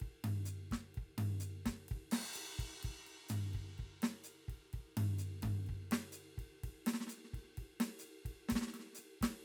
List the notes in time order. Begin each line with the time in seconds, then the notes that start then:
0.01 kick, ride
0.08 kick
0.25 floor tom, ride
0.46 hi-hat pedal, ride
0.72 kick, snare, ride
0.95 kick, ride
1.19 floor tom, ride
1.41 hi-hat pedal, ride
1.66 kick, snare, ride
1.72 kick
1.89 kick, ride
1.98 kick
2.12 snare, crash
2.34 hi-hat pedal, ride
2.60 kick, ride
2.66 kick
2.84 kick, ride
2.91 kick
3.07 ride
3.29 floor tom, hi-hat pedal, ride
3.54 kick, ride
3.61 kick
3.79 kick, ride
3.85 kick
4.03 snare, ride
4.25 hi-hat pedal, ride
4.49 kick, ride
4.54 kick
4.74 kick, ride
4.80 kick
4.98 floor tom, ride
5.19 hi-hat pedal, ride
5.43 kick, floor tom, ride
5.67 kick, ride
5.75 kick
5.92 snare, ride
6.13 hi-hat pedal, ride
6.38 kick, ride
6.44 kick
6.64 kick, ride
6.69 kick
6.87 snare, ride
6.94 snare
7.01 snare
7.08 snare, hi-hat pedal
7.13 snare
7.18 snare
7.25 snare
7.31 kick, snare, ride
7.38 snare
7.44 snare
7.49 snare
7.52 snare
7.55 kick, snare, ride
7.81 snare, ride
8.00 hi-hat pedal
8.04 ride
8.26 kick, ride
8.31 kick
8.50 kick, snare, ride
8.56 kick, snare
8.62 snare
8.68 snare
8.75 snare, ride
8.80 snare
8.87 snare
8.93 snare, hi-hat pedal
8.99 snare, ride
9.22 kick, snare, ride
9.27 kick